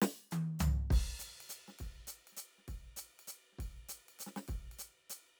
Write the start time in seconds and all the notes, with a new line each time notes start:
0.02 snare
0.31 hi-hat pedal, high tom
0.59 floor tom, hi-hat pedal
0.90 kick, ride, crash
1.19 hi-hat pedal, ride
1.40 ride
1.49 hi-hat pedal, ride
1.68 snare
1.79 kick, ride
2.07 hi-hat pedal, ride
2.27 ride
2.32 snare
2.37 hi-hat pedal, ride
2.58 snare
2.68 kick, ride
2.96 hi-hat pedal, ride
3.19 ride
3.27 hi-hat pedal, ride
3.52 snare
3.58 kick, ride
3.89 hi-hat pedal, ride
4.08 ride
4.19 hi-hat pedal, ride
4.26 snare
4.36 snare
4.48 kick, ride
4.71 ride
4.79 hi-hat pedal, ride
5.10 hi-hat pedal, ride